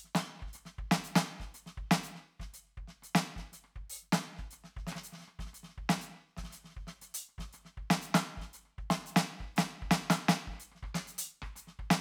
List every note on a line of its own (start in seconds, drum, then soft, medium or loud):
0.01 hi-hat pedal soft
0.05 snare soft
0.15 snare loud
0.20 cross-stick medium
0.30 cross-stick soft
0.40 kick soft
0.40 cross-stick soft
0.47 snare soft
0.53 cross-stick soft
0.53 snare soft
0.53 closed hi-hat soft
0.53 hi-hat pedal medium
0.66 snare soft
0.79 kick soft
0.79 cross-stick soft
0.92 snare loud
1.01 snare soft
1.04 snare soft
1.04 hi-hat pedal medium
1.16 snare loud
1.30 snare soft
1.40 kick soft
1.40 snare soft
1.54 cross-stick soft
1.54 closed hi-hat soft
1.54 hi-hat pedal medium
1.66 snare soft
1.78 kick soft
1.78 cross-stick soft
1.91 snare loud
2.04 cross-stick soft
2.04 snare soft
2.04 hi-hat pedal medium
2.15 snare soft
2.40 kick soft
2.40 snare soft
2.54 cross-stick soft
2.54 closed hi-hat soft
2.54 hi-hat pedal medium
2.78 kick soft
2.78 cross-stick soft
2.88 snare soft
2.99 snare soft
3.02 cross-stick soft
3.02 snare soft
3.02 hi-hat pedal medium
3.15 snare loud
3.36 kick soft
3.36 snare soft
3.44 snare soft
3.52 snare soft
3.52 closed hi-hat soft
3.52 hi-hat pedal medium
3.64 cross-stick soft
3.76 kick soft
3.76 cross-stick soft
3.90 open hi-hat medium
3.96 hi-hat pedal soft
4.03 snare soft
4.13 snare loud
4.17 cross-stick soft
4.29 snare soft
4.37 kick soft
4.37 snare soft
4.44 snare soft
4.51 cross-stick soft
4.51 hi-hat pedal medium
4.56 closed hi-hat soft
4.64 snare soft
4.77 kick soft
4.77 snare soft
4.87 snare medium
4.92 cross-stick medium
4.92 snare medium
5.03 cross-stick soft
5.03 hi-hat pedal medium
5.13 snare soft
5.16 snare soft
5.19 snare soft
5.22 snare soft
5.27 cross-stick soft
5.27 snare soft
5.39 kick soft
5.39 snare soft
5.46 snare soft
5.53 cross-stick soft
5.53 snare soft
5.53 hi-hat pedal medium
5.63 snare soft
5.68 snare soft
5.78 kick soft
5.78 cross-stick soft
5.90 snare loud
5.97 snare soft
6.00 snare soft
6.00 hi-hat pedal medium
6.22 snare soft
6.28 snare soft
6.37 kick soft
6.37 snare soft
6.44 snare soft
6.49 snare soft
6.52 snare soft
6.52 closed hi-hat soft
6.52 hi-hat pedal medium
6.65 snare soft
6.69 snare soft
6.77 kick soft
6.87 snare soft
7.01 cross-stick soft
7.01 snare soft
7.01 hi-hat pedal medium
7.14 closed hi-hat loud
7.29 cross-stick soft
7.38 kick soft
7.38 snare soft
7.53 cross-stick soft
7.53 snare soft
7.53 hi-hat pedal medium
7.65 snare soft
7.78 kick soft
7.78 cross-stick soft
7.91 snare loud
8.01 snare soft
8.01 hi-hat pedal medium
8.04 snare soft
8.15 snare loud
8.38 kick soft
8.38 snare soft
8.53 cross-stick soft
8.53 hi-hat pedal medium
8.66 cross-stick soft
8.78 kick soft
8.78 snare soft
8.91 snare loud
9.03 snare soft
9.03 hi-hat pedal medium
9.16 snare loud
9.40 kick soft
9.56 cross-stick soft
9.56 cross-stick medium
9.56 snare loud
9.56 hi-hat pedal medium
9.64 cross-stick soft
9.81 kick soft
9.81 cross-stick soft
9.91 snare loud
10.02 snare soft
10.10 snare loud
10.10 hi-hat pedal medium
10.20 snare soft
10.29 snare loud
10.48 kick soft
10.59 cross-stick soft
10.59 hi-hat pedal medium
10.72 cross-stick soft
10.72 snare soft
10.83 kick soft
10.83 cross-stick soft
10.83 snare soft
10.95 snare loud
11.05 cross-stick soft
11.05 snare soft
11.05 hi-hat pedal medium
11.18 closed hi-hat loud
11.42 kick soft
11.42 cross-stick medium
11.56 cross-stick soft
11.56 snare soft
11.56 hi-hat pedal medium
11.68 snare soft
11.79 kick soft
11.79 cross-stick soft
11.91 snare loud